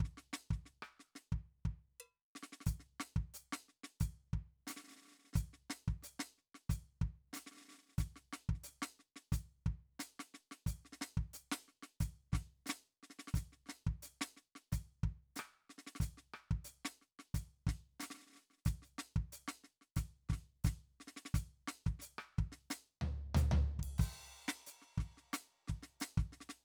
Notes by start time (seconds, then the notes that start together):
0.01 kick
0.05 snare
0.18 snare
0.34 snare
0.51 kick, snare
0.66 snare
0.83 cross-stick
1.00 snare
1.16 snare
1.33 kick
1.66 kick
2.01 percussion
2.36 snare
2.43 snare
2.53 snare
2.61 snare
2.67 kick, hi-hat pedal
2.80 snare
3.01 snare
3.17 kick
3.35 hi-hat pedal
3.53 snare
3.69 snare
3.84 snare
4.01 kick, hi-hat pedal
4.34 kick
4.68 snare, hi-hat pedal
4.71 snare
4.77 snare
4.80 snare
4.85 snare
4.88 snare, hi-hat pedal
4.91 snare
4.93 snare
4.97 snare
4.98 snare
5.02 snare
5.06 snare
5.08 snare
5.11 snare
5.15 snare
5.20 snare
5.22 snare
5.28 snare
5.34 kick, snare, hi-hat pedal
5.54 snare
5.71 snare
5.88 kick, snare
6.03 snare, hi-hat pedal
6.20 snare
6.39 snare
6.55 snare
6.70 kick, snare, hi-hat pedal
7.02 kick
7.34 snare, hi-hat pedal
7.37 snare
7.52 snare
7.55 snare
7.58 snare
7.60 snare
7.62 snare
7.65 snare
7.69 snare
7.71 snare
7.73 snare
7.75 snare
7.79 snare
7.83 snare
7.87 snare
7.89 snare
7.92 snare
7.99 kick, snare, hi-hat pedal
8.17 snare
8.33 snare
8.50 kick
8.55 snare
8.64 hi-hat pedal
8.69 snare
8.83 snare
9.00 snare
9.17 snare
9.33 kick, snare, hi-hat pedal
9.67 kick
10.00 snare, hi-hat pedal
10.20 snare
10.35 snare
10.52 snare
10.67 kick, hi-hat pedal
10.86 snare
10.93 snare
11.02 snare
11.18 kick
11.34 snare, hi-hat pedal
11.52 snare
11.69 snare
11.83 snare
12.01 kick, snare, hi-hat pedal
12.33 kick, snare
12.35 snare
12.67 snare, hi-hat pedal
12.70 snare
13.04 snare
13.11 snare
13.20 snare
13.28 snare
13.35 kick, snare, hi-hat pedal
13.53 snare
13.67 snare
13.70 snare
13.87 kick
14.03 snare, hi-hat pedal
14.22 snare
14.37 snare
14.56 snare
14.73 kick, snare, hi-hat pedal
15.04 kick
15.37 cross-stick, snare, hi-hat pedal
15.70 snare
15.79 snare
15.87 snare
15.96 snare
16.01 kick, snare, hi-hat pedal
16.18 snare
16.34 cross-stick
16.52 kick
16.65 snare, hi-hat pedal
16.86 snare
17.02 snare
17.20 snare
17.35 kick, snare, hi-hat pedal
17.68 kick, snare
18.00 snare, hi-hat pedal
18.04 snare
18.11 snare
18.15 snare
18.18 snare
18.20 snare
18.23 snare
18.27 snare
18.30 snare
18.33 snare
18.36 snare
18.38 snare
18.42 snare
18.51 snare
18.53 snare
18.58 snare
18.66 kick, snare, hi-hat pedal
18.83 snare, hi-hat pedal
18.99 snare
19.17 kick
19.33 hi-hat pedal
19.49 snare
19.64 snare
19.82 snare
19.97 kick, snare, hi-hat pedal
20.30 kick, snare
20.33 snare
20.65 kick, snare, hi-hat pedal
21.01 snare
21.08 snare
21.17 snare
21.26 snare
21.35 kick, snare, hi-hat pedal
21.68 snare
21.87 kick, snare
22.00 snare, hi-hat pedal
22.19 cross-stick
22.38 kick, snare
22.53 snare
22.71 snare, hi-hat pedal
23.02 floor tom
23.35 floor tom, hi-hat pedal
23.52 floor tom
23.80 kick, ride
23.99 kick, hi-hat pedal, crash
24.49 snare
24.67 snare, hi-hat pedal
24.83 snare
24.98 kick, snare
25.18 snare
25.34 snare, hi-hat pedal
25.68 kick, snare
25.83 snare
26.01 snare, hi-hat pedal
26.18 kick, snare
26.33 snare
26.41 snare
26.50 snare